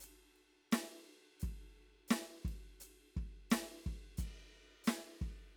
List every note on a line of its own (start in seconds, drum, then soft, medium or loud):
0.01 hi-hat pedal medium
0.01 ride soft
0.36 ride soft
0.72 snare loud
0.72 hi-hat pedal medium
0.72 ride medium
1.40 kick soft
1.40 hi-hat pedal soft
1.40 ride soft
2.08 snare loud
2.08 hi-hat pedal medium
2.08 ride medium
2.45 kick soft
2.45 ride soft
2.81 hi-hat pedal medium
2.81 ride soft
3.16 kick soft
3.16 ride soft
3.51 snare loud
3.51 hi-hat pedal medium
3.51 ride medium
3.85 kick soft
3.85 ride soft
4.18 kick soft
4.18 hi-hat pedal medium
4.18 crash soft
4.85 snare loud
4.85 hi-hat pedal medium
4.85 ride medium
5.22 kick soft
5.22 ride soft